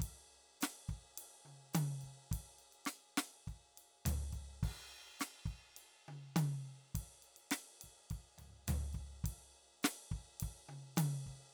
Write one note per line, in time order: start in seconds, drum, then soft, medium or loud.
0.01 kick soft
0.01 ride medium
0.61 snare loud
0.61 hi-hat pedal medium
0.61 ride medium
0.89 kick soft
0.89 ride soft
1.18 ride medium
1.46 high tom soft
1.74 hi-hat pedal medium
1.74 high tom medium
1.74 ride medium
2.02 kick soft
2.02 ride soft
2.32 kick soft
2.32 ride medium
2.59 ride soft
2.73 ride soft
2.86 snare medium
2.86 hi-hat pedal medium
2.86 ride soft
3.18 snare loud
3.18 ride medium
3.48 kick soft
3.48 ride soft
3.78 ride soft
4.06 floor tom medium
4.06 hi-hat pedal medium
4.06 ride medium
4.33 kick soft
4.33 ride soft
4.63 kick medium
4.63 crash medium
5.20 snare medium
5.20 hi-hat pedal medium
5.20 ride soft
5.46 kick soft
5.46 ride soft
5.77 ride soft
6.09 high tom soft
6.37 hi-hat pedal medium
6.37 high tom loud
6.37 ride medium
6.95 kick soft
6.95 ride medium
7.23 ride soft
7.37 ride soft
7.52 snare loud
7.52 hi-hat pedal medium
7.52 ride medium
7.82 kick soft
7.82 ride soft
8.11 kick soft
8.11 ride soft
8.39 floor tom soft
8.39 ride soft
8.68 floor tom medium
8.68 hi-hat pedal medium
8.68 ride medium
8.94 kick soft
8.94 ride soft
9.25 kick soft
9.25 ride medium
9.84 snare loud
9.84 hi-hat pedal medium
9.84 ride medium
10.12 kick soft
10.41 kick soft
10.41 ride medium
10.69 high tom soft
10.97 hi-hat pedal medium
10.97 high tom loud
10.97 ride medium
11.27 kick soft